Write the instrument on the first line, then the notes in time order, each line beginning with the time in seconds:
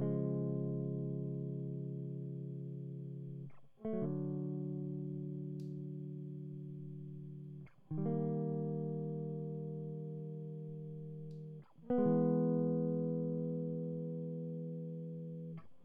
electric guitar
0.00 C#3 F3 G#3
3.86 A3
3.94 F#3
4.03 D3
7.92 D#3
7.99 G3
8.06 A#3
11.91 B3
11.99 G#3
12.07 E3